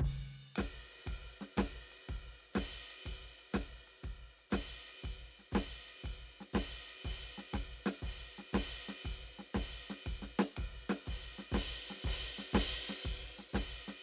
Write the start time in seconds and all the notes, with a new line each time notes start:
0.01 kick, crash
0.56 kick, snare, hi-hat pedal, ride
0.93 ride
1.07 kick, ride
1.42 snare
1.58 kick, snare, hi-hat pedal, ride
1.93 ride
2.09 kick, ride
2.41 ride
2.54 kick, snare, hi-hat pedal, ride
2.91 ride
3.06 kick, ride
3.39 ride
3.53 kick, snare, hi-hat pedal, ride
3.88 ride
4.04 kick, ride
4.40 ride
4.51 kick, snare, hi-hat pedal, ride
4.90 ride
5.04 kick, ride
5.40 snare
5.52 kick, snare, hi-hat pedal, ride
5.89 ride
6.04 kick, ride
6.41 snare
6.54 kick, snare, hi-hat pedal, ride
6.89 ride
7.05 kick, ride
7.38 snare
7.54 kick, snare, hi-hat pedal, ride
7.87 snare, ride
8.03 kick, ride
8.39 snare
8.53 kick, snare, hi-hat pedal, ride
8.89 snare
9.06 kick, ride
9.39 snare
9.54 kick, snare, hi-hat pedal, ride
9.91 snare
10.07 kick, ride
10.23 snare
10.40 snare
10.57 kick, hi-hat pedal, ride
10.90 snare, ride
11.07 kick, ride
11.39 snare
11.52 kick, snare, hi-hat pedal, ride
11.91 snare
11.96 snare
12.05 kick, ride
12.39 snare
12.54 kick, snare, hi-hat pedal, ride
12.90 snare
13.06 kick, ride
13.39 snare
13.54 kick, snare, hi-hat pedal, ride
13.89 snare